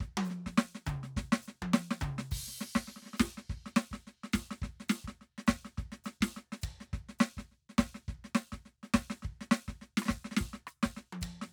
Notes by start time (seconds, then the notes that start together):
0.01 kick, snare
0.08 kick
0.18 high tom
0.25 hi-hat pedal
0.31 snare
0.47 kick, snare
0.51 kick
0.58 snare
0.75 snare
0.87 kick, hi-hat pedal, mid tom
0.95 kick
0.97 kick
1.04 snare
1.17 kick, snare
1.24 kick
1.33 snare
1.43 hi-hat pedal
1.48 snare
1.62 kick, high tom
1.74 snare
1.91 snare
2.01 kick, hi-hat pedal, mid tom
2.19 snare
2.32 kick, crash
2.39 kick
2.44 kick
2.48 snare
2.58 snare, hi-hat pedal
2.76 kick, snare
2.88 snare
2.97 snare
3.03 snare
3.06 snare
3.14 snare, hi-hat pedal
3.20 kick, snare
3.38 snare
3.50 kick, snare
3.57 kick
3.66 snare
3.77 snare, hi-hat pedal
3.92 kick, snare
4.08 snare
4.24 snare
4.33 kick, snare, hi-hat pedal
4.51 snare
4.62 kick, snare
4.69 kick
4.81 snare
4.89 snare, hi-hat pedal
5.05 kick, snare
5.10 kick
5.22 snare
5.39 snare
5.47 kick, snare, hi-hat pedal
5.55 kick
5.65 snare
5.78 kick, snare
5.85 kick
5.93 snare
6.04 snare, hi-hat pedal
6.21 kick, snare
6.37 snare
6.53 snare
6.62 kick, hi-hat pedal, floor tom
6.70 kick
6.73 kick
6.81 snare
6.94 kick, snare
7.00 kick
7.09 snare
7.19 snare, hi-hat pedal
7.37 kick, snare
7.52 snare
7.70 snare
7.79 kick, snare, hi-hat pedal
7.88 kick
7.95 snare
8.09 kick, snare
8.15 kick
8.25 snare
8.35 snare, hi-hat pedal
8.53 kick, snare
8.66 snare
8.84 snare
8.94 kick, snare, hi-hat pedal
9.01 kick
9.04 kick
9.11 snare
9.23 kick, snare
9.31 kick
9.41 snare
9.52 snare, hi-hat pedal
9.69 kick, snare
9.82 snare
9.98 snare
10.03 cross-stick, snare
10.09 kick, snare, hi-hat pedal
10.16 kick
10.25 snare
10.32 snare
10.37 kick, snare
10.48 kick
10.54 snare
10.68 cross-stick, hi-hat pedal
10.83 kick, snare
10.97 snare
11.13 high tom
11.22 kick, hi-hat pedal, floor tom
11.42 snare